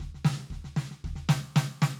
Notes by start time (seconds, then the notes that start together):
0.00 kick, snare
0.14 snare
0.25 snare
0.38 snare
0.50 kick, snare
0.64 snare
0.76 snare
0.91 snare
1.04 kick, snare
1.16 snare
1.29 snare
1.56 snare
1.82 snare